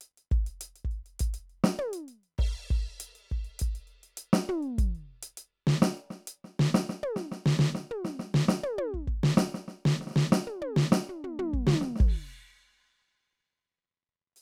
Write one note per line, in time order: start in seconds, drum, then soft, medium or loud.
0.01 closed hi-hat medium
0.18 closed hi-hat soft
0.31 kick medium
0.31 closed hi-hat soft
0.47 closed hi-hat medium
0.61 closed hi-hat loud
0.76 closed hi-hat soft
0.85 kick soft
0.91 closed hi-hat soft
1.06 closed hi-hat soft
1.20 closed hi-hat loud
1.20 kick medium
1.34 closed hi-hat medium
1.50 closed hi-hat soft
1.64 snare loud
1.79 high tom loud
1.93 closed hi-hat medium
2.08 closed hi-hat soft
2.23 closed hi-hat soft
2.38 kick medium
2.38 crash medium
2.53 closed hi-hat soft
2.71 kick medium
2.85 closed hi-hat soft
3.00 closed hi-hat loud
3.15 closed hi-hat soft
3.30 kick soft
3.30 closed hi-hat soft
3.45 closed hi-hat soft
3.59 closed hi-hat loud
3.59 kick medium
3.75 closed hi-hat soft
3.87 closed hi-hat soft
4.03 closed hi-hat medium
4.17 closed hi-hat loud
4.33 snare loud
4.49 floor tom loud
4.63 closed hi-hat soft
4.79 closed hi-hat medium
4.79 kick medium
4.95 closed hi-hat soft
5.23 closed hi-hat loud
5.37 closed hi-hat loud
5.67 snare loud
5.82 snare loud
5.97 closed hi-hat soft
6.11 snare soft
6.28 closed hi-hat loud
6.45 snare soft
6.60 snare loud
6.75 snare loud
6.90 snare medium
7.03 high tom loud
7.16 snare medium
7.32 snare medium
7.46 snare loud
7.59 snare loud
7.75 snare medium
7.91 mid tom loud
8.05 snare medium
8.20 snare medium
8.35 snare loud
8.49 snare loud
8.63 high tom loud
8.78 high tom loud
8.94 kick soft
9.08 kick medium
9.24 snare loud
9.38 snare loud
9.54 snare medium
9.68 snare soft
9.86 snare loud
10.01 snare soft
10.07 snare soft
10.16 snare loud
10.32 snare loud
10.47 mid tom medium
10.62 high tom loud
10.77 snare loud
10.92 snare loud
11.09 floor tom medium
11.24 floor tom medium
11.39 floor tom loud
11.54 kick soft
11.67 snare loud
11.67 floor tom loud
11.81 snare medium
11.96 snare soft
11.96 high tom soft
12.00 kick medium
12.07 crash medium
14.36 hi-hat pedal medium